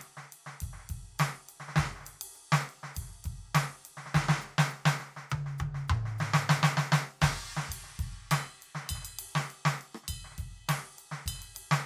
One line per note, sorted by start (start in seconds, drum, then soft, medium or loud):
0.01 hi-hat pedal soft
0.01 ride medium
0.18 snare soft
0.32 hi-hat pedal medium
0.32 ride medium
0.47 snare soft
0.61 kick soft
0.61 hi-hat pedal medium
0.61 ride medium
0.74 snare soft
0.80 snare soft
0.85 snare soft
0.90 kick soft
0.90 hi-hat pedal soft
0.90 ride medium
1.19 snare loud
1.19 hi-hat pedal medium
1.19 ride loud
1.31 snare soft
1.49 hi-hat pedal medium
1.49 ride medium
1.61 snare soft
1.69 snare soft
1.76 kick soft
1.76 snare loud
1.76 hi-hat pedal medium
1.85 kick soft
1.87 kick soft
1.87 snare soft
1.97 snare soft
2.01 snare soft
2.06 snare soft
2.06 hi-hat pedal medium
2.06 ride medium
2.15 snare soft
2.22 ride loud
2.35 hi-hat pedal medium
2.53 snare loud
2.60 snare soft
2.60 hi-hat pedal medium
2.70 ride soft
2.84 snare medium
2.95 kick soft
2.95 hi-hat pedal medium
2.95 ride loud
3.02 snare soft
3.08 snare soft
3.23 kick soft
3.23 snare soft
3.23 hi-hat pedal medium
3.23 ride medium
3.35 kick soft
3.55 snare loud
3.55 hi-hat pedal medium
3.55 ride loud
3.62 snare soft
3.85 hi-hat pedal medium
3.85 ride medium
3.98 snare soft
4.07 snare soft
4.15 kick soft
4.15 snare loud
4.15 hi-hat pedal loud
4.29 snare loud
4.34 snare soft
4.41 snare soft
4.41 hi-hat pedal loud
4.59 snare loud
4.70 snare soft
4.70 hi-hat pedal loud
4.86 snare loud
4.99 snare soft
4.99 hi-hat pedal medium
5.17 snare soft
5.30 kick soft
5.30 hi-hat pedal medium
5.30 high tom loud
5.47 snare soft
5.59 kick soft
5.59 hi-hat pedal medium
5.59 high tom loud
5.67 kick soft
5.75 snare soft
5.88 kick soft
5.88 hi-hat pedal medium
5.88 mid tom loud
6.06 snare soft
6.16 snare soft
6.16 hi-hat pedal medium
6.21 snare medium
6.34 snare loud
6.50 snare loud
6.50 hi-hat pedal soft
6.64 snare loud
6.72 hi-hat pedal soft
6.78 snare loud
6.93 snare loud
6.98 hi-hat pedal medium
7.22 kick medium
7.22 snare loud
7.22 hi-hat pedal medium
7.22 crash loud
7.29 kick soft
7.57 snare medium
7.69 kick soft
7.69 hi-hat pedal medium
7.69 ride loud
7.84 snare soft
7.89 snare soft
7.92 snare soft
8.00 kick medium
8.00 hi-hat pedal medium
8.00 ride medium
8.10 kick soft
8.31 snare loud
8.31 hi-hat pedal medium
8.31 ride bell loud
8.61 hi-hat pedal medium
8.61 ride medium
8.75 snare medium
8.87 snare soft
8.87 ride bell loud
8.91 kick soft
8.91 hi-hat pedal medium
8.96 kick soft
8.96 snare soft
9.03 snare soft
9.03 ride bell medium
9.19 hi-hat pedal medium
9.19 ride loud
9.36 snare medium
9.40 cross-stick soft
9.49 hi-hat pedal medium
9.49 ride soft
9.66 snare loud
9.78 hi-hat pedal medium
9.78 ride soft
9.95 cross-stick medium
10.04 snare soft
10.09 kick soft
10.09 hi-hat pedal medium
10.09 ride bell loud
10.25 snare soft
10.32 snare soft
10.39 kick soft
10.39 hi-hat pedal medium
10.39 ride medium
10.47 kick soft
10.69 snare loud
10.69 hi-hat pedal medium
10.69 ride loud
10.78 snare soft
10.98 hi-hat pedal medium
10.98 ride medium
11.12 snare medium
11.27 kick soft
11.27 snare soft
11.27 hi-hat pedal loud
11.27 ride bell loud
11.36 snare soft
11.39 snare soft
11.39 ride medium
11.55 hi-hat pedal medium
11.55 ride loud
11.72 snare loud
11.82 hi-hat pedal soft